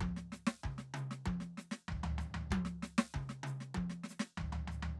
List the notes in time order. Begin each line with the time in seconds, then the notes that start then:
0.01 kick, high tom
0.09 kick
0.11 kick
0.17 snare
0.32 snare, hi-hat pedal
0.47 snare
0.64 kick, mid tom
0.78 snare
0.94 hi-hat pedal, mid tom
1.11 snare
1.26 kick, high tom
1.34 kick
1.41 snare
1.58 snare, hi-hat pedal
1.72 snare
1.89 kick, floor tom
2.04 floor tom
2.18 floor tom, hi-hat pedal
2.35 floor tom
2.51 kick, high tom
2.57 kick
2.65 snare
2.83 snare, hi-hat pedal
2.98 snare
3.14 kick, mid tom
3.23 kick
3.30 snare
3.44 hi-hat pedal, mid tom
3.61 snare
3.75 kick, high tom
3.90 snare
4.04 snare
4.09 snare, hi-hat pedal
4.20 snare
4.38 kick, floor tom
4.53 floor tom
4.68 floor tom, hi-hat pedal
4.83 floor tom